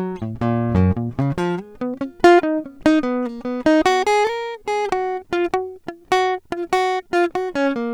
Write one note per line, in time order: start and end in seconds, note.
0.00 0.22 F#3
0.23 0.40 A2
0.43 0.87 A#2
0.77 0.96 F#2
0.98 1.15 A#2
1.20 1.37 C#3
1.39 1.58 F3
1.60 1.80 G#3
1.82 1.98 B3
2.02 2.16 C4
2.25 2.39 F4
2.39 2.67 D#4
2.67 2.82 C#4
2.87 3.05 D#4
3.04 3.24 B3
3.24 3.30 A#3
3.47 3.65 B3
3.67 3.82 D#4
3.83 3.94 D#4
3.83 4.06 F#4
4.08 4.24 G#4
4.25 4.59 A#4
4.69 4.91 G#4
4.94 5.26 F#4
5.34 5.51 F4
5.55 5.81 F#4
5.90 6.06 E4
6.13 6.42 F#4
6.53 6.70 F4
6.74 7.05 F#4
7.14 7.32 F4
7.36 7.54 F#4
7.57 7.82 C#4
7.77 7.94 A#3